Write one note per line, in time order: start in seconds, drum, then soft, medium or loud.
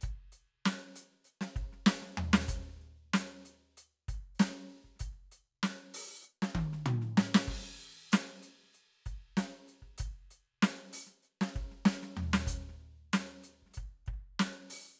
0.01 open hi-hat medium
0.01 kick soft
0.01 hi-hat pedal soft
0.32 closed hi-hat soft
0.65 closed hi-hat soft
0.65 snare loud
0.96 open hi-hat medium
1.13 snare soft
1.24 closed hi-hat soft
1.24 hi-hat pedal soft
1.41 snare medium
1.56 kick soft
1.56 closed hi-hat soft
1.62 kick soft
1.65 kick soft
1.72 snare soft
1.86 snare loud
2.02 snare soft
2.17 floor tom loud
2.33 snare loud
2.41 snare soft
2.48 closed hi-hat medium
2.48 kick soft
2.54 kick soft
2.57 kick soft
2.68 snare soft
2.76 snare soft
2.80 snare soft
2.80 closed hi-hat soft
2.84 snare soft
3.14 open hi-hat medium
3.14 snare loud
3.26 snare soft
3.45 closed hi-hat soft
3.77 closed hi-hat soft
4.08 closed hi-hat soft
4.08 kick soft
4.14 kick soft
4.17 kick soft
4.35 hi-hat pedal soft
4.40 closed hi-hat medium
4.40 snare loud
4.50 snare soft
4.70 closed hi-hat soft
4.84 kick soft
4.96 closed hi-hat medium
4.96 snare soft
5.01 kick soft
5.12 snare soft
5.32 closed hi-hat soft
5.63 closed hi-hat medium
5.63 snare medium
5.94 open hi-hat loud
6.22 closed hi-hat soft
6.22 hi-hat pedal soft
6.42 snare medium
6.55 kick soft
6.55 high tom loud
6.73 snare soft
6.86 mid tom loud
7.01 snare soft
7.17 snare loud
7.35 snare loud
7.48 kick soft
7.48 crash medium
7.53 kick soft
7.64 snare soft
7.71 snare soft
7.75 snare soft
7.78 closed hi-hat soft
7.78 snare soft
8.12 closed hi-hat loud
8.12 snare loud
8.43 closed hi-hat soft
8.63 snare soft
8.68 snare soft
8.68 hi-hat pedal soft
8.72 closed hi-hat soft
8.72 snare soft
9.06 closed hi-hat soft
9.06 kick soft
9.37 open hi-hat medium
9.37 snare loud
9.37 hi-hat pedal soft
9.68 closed hi-hat soft
9.82 kick soft
9.95 snare soft
9.97 closed hi-hat medium
9.97 kick soft
9.97 snare soft
10.05 kick soft
10.31 closed hi-hat soft
10.62 closed hi-hat medium
10.62 snare loud
10.93 open hi-hat loud
11.07 snare soft
11.23 closed hi-hat soft
11.23 hi-hat pedal soft
11.41 snare medium
11.56 kick soft
11.56 closed hi-hat soft
11.61 kick soft
11.64 kick soft
11.71 snare soft
11.85 snare loud
12.03 snare soft
12.17 floor tom loud
12.33 snare loud
12.47 closed hi-hat loud
12.47 kick soft
12.53 kick soft
12.55 kick soft
12.69 snare soft
12.74 snare soft
12.78 snare soft
12.83 closed hi-hat soft
13.13 closed hi-hat medium
13.13 snare loud
13.44 closed hi-hat soft
13.62 kick soft
13.66 snare soft
13.70 closed hi-hat medium
13.70 snare soft
13.76 kick soft
13.76 snare soft
14.06 kick soft
14.06 closed hi-hat soft
14.13 kick soft
14.39 closed hi-hat medium
14.39 snare loud
14.70 open hi-hat loud